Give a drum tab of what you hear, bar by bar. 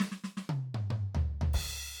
CC |------------x---|
SD |oooo------------|
T1 |----o-----------|
T2 |------oo--------|
FT |---------o-o----|
BD |------------o---|